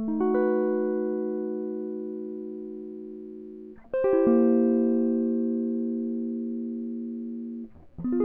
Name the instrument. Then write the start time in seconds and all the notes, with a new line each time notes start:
electric guitar
0.00 A3
0.09 D#4
0.21 F#4
0.35 B4
3.94 C5
4.05 G4
4.14 E4
4.28 A#3
8.06 B3
8.13 F4